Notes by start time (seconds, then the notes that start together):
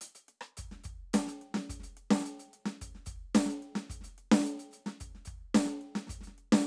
0.01 closed hi-hat
0.15 closed hi-hat
0.28 closed hi-hat
0.41 cross-stick
0.57 closed hi-hat, kick
0.64 kick
0.67 kick
0.71 snare
0.79 snare
0.84 closed hi-hat, kick
1.13 closed hi-hat, snare
1.27 closed hi-hat, snare
1.41 closed hi-hat
1.54 snare
1.69 closed hi-hat, kick, snare
1.75 kick
1.80 closed hi-hat, snare
1.84 snare
1.88 snare
1.97 closed hi-hat
2.11 snare
2.20 snare
2.25 closed hi-hat
2.39 closed hi-hat
2.53 closed hi-hat
2.66 snare
2.81 closed hi-hat, kick
2.95 snare
3.00 snare
3.05 closed hi-hat, kick, hi-hat pedal
3.16 kick
3.34 closed hi-hat, snare
3.45 snare
3.50 open hi-hat
3.62 closed hi-hat
3.75 snare
3.87 closed hi-hat, kick, snare
4.01 closed hi-hat, snare
4.06 snare
4.18 closed hi-hat
4.31 snare
4.39 snare
4.46 closed hi-hat
4.55 snare
4.59 closed hi-hat
4.71 closed hi-hat, hi-hat pedal
4.86 snare
5.00 closed hi-hat, kick
5.15 snare
5.21 snare
5.25 closed hi-hat, kick
5.35 kick
5.54 closed hi-hat, snare
5.65 closed hi-hat, snare
5.81 closed hi-hat
5.95 snare
6.07 closed hi-hat, kick, snare
6.15 kick
6.21 closed hi-hat, snare
6.27 snare
6.38 closed hi-hat
6.52 snare
6.60 snare